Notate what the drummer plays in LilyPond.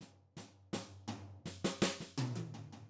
\new DrumStaff \drummode { \time 4/4 \tempo 4 = 83 <sn tomfh>8 <sn tomfh>8 <sn tomfh>8 tomfh8 sn16 sn16 sn16 sn16 toml16 <tommh hho>16 tomfh16 tomfh16 | }